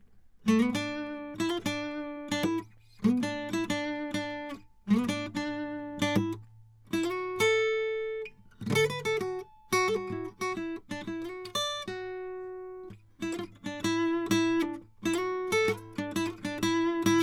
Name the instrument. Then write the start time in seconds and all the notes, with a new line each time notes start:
acoustic guitar
0.49 A3
0.60 B3
0.76 D4
1.41 E4
1.67 D4
2.33 D4
2.44 E4
3.05 B3
3.24 D4
3.55 E4
3.71 D4
4.15 D4
4.92 B3
5.10 D4
5.38 D4
6.03 D4
6.17 E4
6.94 E4
7.06 F#4
7.41 A4
8.71 D3
8.76 A4
8.91 B4
9.06 A4
9.22 F#4
9.73 F#4
9.89 A4
9.97 F#4
10.14 E4
10.42 F#4
10.58 E4
10.92 D4
11.09 E4
11.30 F#4
11.56 D5
11.89 F#4
13.23 E4
13.67 D4
13.85 E4
14.32 E4
14.62 D4
15.07 E4
15.16 F#4
15.53 A4
15.69 E4
15.99 D4
16.17 E4
16.46 D4
16.64 E4
17.07 E4